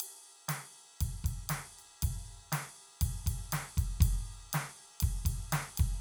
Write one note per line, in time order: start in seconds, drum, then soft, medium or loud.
0.00 ride loud
0.48 snare medium
0.48 ride loud
1.01 kick medium
1.01 ride loud
1.24 kick medium
1.24 ride medium
1.49 snare medium
1.49 ride loud
1.79 ride soft
2.02 kick medium
2.02 ride loud
2.52 snare medium
2.52 ride loud
3.01 kick medium
3.01 ride loud
3.26 kick medium
3.26 ride loud
3.52 snare medium
3.52 ride loud
3.77 kick medium
3.77 ride medium
4.00 kick medium
4.00 ride loud
4.53 snare medium
4.53 ride loud
5.00 kick medium
5.00 ride loud
5.25 kick medium
5.25 ride loud
5.52 snare medium
5.52 ride loud
5.77 kick medium
5.77 ride loud